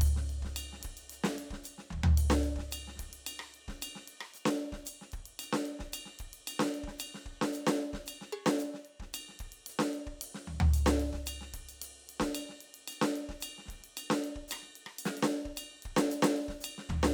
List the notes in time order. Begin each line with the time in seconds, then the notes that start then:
0.01 kick, hi-hat pedal, ride
0.14 kick, snare
0.29 ride
0.42 kick, snare
0.56 hi-hat pedal, ride bell
0.73 snare
0.80 snare, ride
0.85 kick
0.89 snare
0.97 ride bell
1.10 hi-hat pedal, ride
1.24 snare
1.38 ride
1.50 kick, snare
1.64 hi-hat pedal, ride bell
1.78 snare
1.91 kick, floor tom
1.99 kick
2.04 floor tom
2.18 hi-hat pedal, ride
2.30 snare
2.43 ride
2.56 kick, snare
2.71 hi-hat pedal, ride bell
2.87 snare
2.96 kick, snare, ride
3.01 snare
3.08 snare
3.13 snare, ride
3.27 hi-hat pedal, ride bell
3.39 cross-stick
3.54 ride
3.68 kick, snare
3.82 hi-hat pedal, ride bell
3.95 snare
4.08 ride
4.21 cross-stick
4.34 hi-hat pedal, ride
4.46 snare
4.58 ride
4.72 kick, snare
4.85 hi-hat pedal, ride bell
5.01 snare
5.12 kick, ride
5.20 kick
5.26 ride
5.39 hi-hat pedal, ride bell
5.53 snare
5.66 ride
5.79 kick, snare
5.86 kick
5.92 hi-hat pedal, ride bell
6.05 snare
6.13 cross-stick
6.19 kick, ride
6.33 ride
6.47 hi-hat pedal, ride bell
6.59 snare
6.65 snare
6.74 ride
6.83 kick
6.88 snare
6.99 hi-hat pedal, ride bell
7.14 snare
7.26 kick, ride
7.41 snare
7.53 hi-hat pedal, ride bell
7.67 snare
7.93 kick, snare
8.06 hi-hat pedal, ride bell
8.21 snare
8.33 percussion
8.46 snare
8.59 hi-hat pedal, ride bell
8.74 snare
8.85 ride
9.00 kick, snare
9.13 hi-hat pedal, ride bell
9.29 snare
9.35 snare
9.39 kick, snare, ride
9.42 snare
9.52 ride
9.66 hi-hat pedal, ride
9.79 snare
9.93 ride
10.07 kick, cross-stick
10.21 hi-hat pedal, ride
10.34 snare
10.47 floor tom
10.60 floor tom
10.74 hi-hat pedal, ride bell
10.86 snare
11.00 ride
11.13 kick, snare
11.26 hi-hat pedal, ride bell
11.41 snare
11.54 kick, ride
11.69 ride bell
11.82 hi-hat pedal, ride
12.09 ride
12.20 kick, snare
12.35 hi-hat pedal, ride bell
12.49 snare
12.61 ride
12.74 ride
12.88 hi-hat pedal, ride bell
13.01 snare
13.16 ride
13.29 kick, snare
13.41 hi-hat pedal, ride bell
13.58 snare
13.66 kick, snare
13.70 snare, ride
13.74 snare
13.80 snare
13.84 ride
13.97 hi-hat pedal, ride bell
14.10 snare
14.24 ride
14.36 kick
14.48 hi-hat pedal, ride bell
14.52 cross-stick
14.62 snare
14.76 ride
14.86 cross-stick
14.99 ride bell
15.04 snare, hi-hat pedal
15.17 ride
15.23 snare
15.45 kick
15.56 hi-hat pedal, ride bell
15.82 kick, ride
15.97 snare
16.10 hi-hat pedal, ride
16.22 snare
16.36 ride
16.48 kick, snare
16.61 hi-hat pedal, ride bell
16.78 snare
16.89 kick, floor tom
16.95 kick
17.03 snare